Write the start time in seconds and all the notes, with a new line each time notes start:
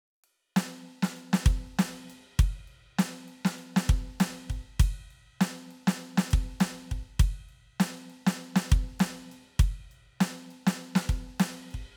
0.24 ride
0.56 snare, ride bell
1.02 snare
1.17 ride bell
1.33 snare
1.46 kick, ride bell
1.79 snare, ride
2.10 ride bell
2.39 kick, ride bell
2.68 ride
2.99 snare, ride bell
3.28 ride
3.45 snare
3.58 ride
3.76 snare
3.89 kick, snare, ride
4.20 snare, ride bell
4.50 kick, ride bell
4.80 kick, ride bell
5.11 ride
5.41 snare, ride bell
5.71 ride
5.87 snare
6.00 ride
6.17 snare
6.31 kick, ride bell
6.60 snare, ride bell
6.91 kick, ride
7.20 kick, ride bell
7.49 ride
7.80 snare, ride bell
8.10 ride
8.27 snare
8.56 snare
8.70 kick, ride bell
9.00 snare, ride
9.31 ride bell
9.59 kick, ride bell
9.91 ride bell
10.21 snare, ride bell
10.51 ride bell
10.67 snare
10.95 snare
11.09 kick, ride bell
11.40 snare, ride
11.71 kick, ride bell